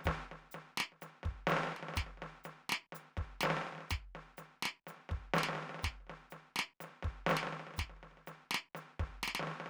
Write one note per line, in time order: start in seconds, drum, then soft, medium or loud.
0.01 snare soft
0.01 hi-hat pedal medium
0.06 kick soft
0.06 snare soft
0.06 snare medium
0.13 kick soft
0.19 snare soft
0.25 snare soft
0.31 snare soft
0.42 snare soft
0.51 snare soft
0.51 hi-hat pedal medium
0.77 snare medium
0.80 snare loud
0.92 snare soft
1.01 hi-hat pedal medium
1.10 snare soft
1.17 snare soft
1.23 kick soft
1.23 snare soft
1.31 kick soft
1.47 snare medium
1.47 hi-hat pedal medium
1.50 snare medium
1.52 snare medium
1.57 snare medium
1.63 snare medium
1.67 snare soft
1.72 snare soft
1.76 snare soft
1.80 snare soft
1.83 snare soft
1.89 snare soft
1.94 kick soft
1.94 snare soft
1.94 hi-hat pedal medium
1.97 snare medium
2.07 snare soft
2.17 snare soft
2.22 snare soft
2.28 snare soft
2.33 snare soft
2.38 snare soft
2.41 snare soft
2.41 hi-hat pedal medium
2.45 snare soft
2.69 snare medium
2.72 snare loud
2.92 snare soft
2.92 hi-hat pedal medium
3.01 snare soft
3.08 snare soft
3.17 kick soft
3.17 snare soft
3.41 snare loud
3.41 hi-hat pedal medium
3.43 snare medium
3.45 snare medium
3.50 snare medium
3.57 snare medium
3.62 snare soft
3.67 snare soft
3.73 snare soft
3.75 snare soft
3.78 snare soft
3.81 snare soft
3.88 snare soft
3.88 hi-hat pedal medium
3.91 kick soft
3.91 snare medium
4.15 snare soft
4.37 snare soft
4.37 hi-hat pedal medium
4.63 snare medium
4.65 snare loud
4.87 snare soft
4.87 hi-hat pedal medium
4.90 snare soft
4.96 snare soft
5.02 snare soft
5.07 snare soft
5.09 kick soft
5.09 snare soft
5.17 kick soft
5.34 snare medium
5.34 hi-hat pedal medium
5.37 snare medium
5.38 snare medium
5.43 snare medium
5.49 snare medium
5.53 snare soft
5.55 snare soft
5.58 snare soft
5.63 snare soft
5.68 snare soft
5.69 snare soft
5.75 snare soft
5.79 snare soft
5.79 hi-hat pedal medium
5.84 kick soft
5.84 snare medium
6.00 snare soft
6.07 snare soft
6.10 snare soft
6.30 snare soft
6.30 hi-hat pedal medium
6.56 snare medium
6.59 snare loud
6.80 snare soft
6.80 hi-hat pedal medium
6.84 snare soft
6.89 snare soft
6.97 snare soft
7.03 kick soft
7.03 snare soft
7.27 snare medium
7.27 hi-hat pedal medium
7.29 snare medium
7.31 snare medium
7.37 snare medium
7.43 snare soft
7.47 snare soft
7.53 snare soft
7.60 snare soft
7.67 snare soft
7.71 snare soft
7.74 snare soft
7.74 hi-hat pedal medium
7.78 kick soft
7.78 snare medium
7.90 snare soft
7.97 snare soft
8.03 snare soft
8.11 snare soft
8.17 snare soft
8.27 snare soft
8.27 hi-hat pedal medium
8.51 snare medium
8.54 snare loud
8.75 snare soft
8.75 hi-hat pedal medium
8.86 snare soft
8.90 snare soft
8.99 kick soft
8.99 snare soft
9.08 kick soft
9.23 snare medium
9.23 hi-hat pedal medium
9.28 snare medium
9.35 snare medium
9.40 snare medium
9.43 snare soft
9.47 snare soft
9.52 snare soft
9.57 snare soft
9.60 snare soft
9.66 snare soft